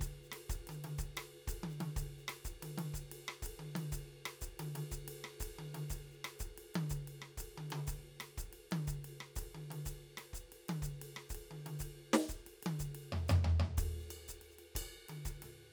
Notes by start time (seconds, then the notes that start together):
0.01 kick, hi-hat pedal, ride
0.24 hi-hat pedal
0.32 cross-stick, ride
0.50 kick, hi-hat pedal
0.67 hi-hat pedal, high tom, ride
0.84 high tom, ride
0.98 kick, hi-hat pedal
1.17 cross-stick, ride
1.48 kick, hi-hat pedal, ride
1.64 high tom
1.70 hi-hat pedal
1.81 high tom, ride
1.96 kick, hi-hat pedal, ride
2.18 hi-hat pedal
2.28 cross-stick, ride
2.45 kick, hi-hat pedal
2.63 high tom, ride
2.78 high tom, ride
2.94 kick, hi-hat pedal
3.12 ride
3.28 cross-stick
3.42 kick, hi-hat pedal, ride
3.59 high tom
3.76 high tom, ride
3.92 kick, hi-hat pedal, ride
4.26 cross-stick, ride
4.41 kick, hi-hat pedal
4.60 high tom, ride
4.75 high tom, ride
4.92 kick, hi-hat pedal
5.08 ride
5.24 cross-stick
5.40 kick, hi-hat pedal, ride
5.59 high tom
5.75 high tom, ride
5.90 kick, hi-hat pedal, ride
6.11 hi-hat pedal
6.25 cross-stick, ride
6.39 kick, hi-hat pedal
6.58 ride
6.75 high tom, ride
6.90 kick, hi-hat pedal
7.08 ride
7.22 cross-stick
7.37 kick, hi-hat pedal, ride
7.58 high tom
7.71 high tom, ride
7.87 kick, hi-hat pedal, ride
8.20 cross-stick, ride
8.38 kick, hi-hat pedal
8.53 ride
8.71 high tom, ride
8.87 kick, hi-hat pedal
9.05 ride
9.21 cross-stick
9.36 kick, hi-hat pedal, ride
9.55 high tom
9.71 high tom, ride
9.86 kick, hi-hat pedal, ride
10.18 cross-stick, ride
10.33 kick, hi-hat pedal
10.52 ride
10.69 high tom, ride
10.82 kick, hi-hat pedal
11.02 ride
11.16 cross-stick
11.30 kick, hi-hat pedal
11.35 ride
11.51 high tom
11.66 high tom, ride
11.79 kick, hi-hat pedal, ride
12.14 snare, ride
12.29 kick, hi-hat pedal
12.47 ride
12.63 high tom, ride
12.79 kick, hi-hat pedal
12.95 ride
13.02 hi-hat pedal
13.12 floor tom
13.28 floor tom, hi-hat pedal
13.45 floor tom
13.60 floor tom
13.77 kick, hi-hat pedal, ride
14.00 hi-hat pedal
14.11 ride bell
14.28 kick, hi-hat pedal
14.41 ride
14.51 hi-hat pedal
14.59 ride
14.75 kick, hi-hat pedal, ride bell
15.09 high tom, ride
15.25 kick, hi-hat pedal, ride
15.42 snare, ride, floor tom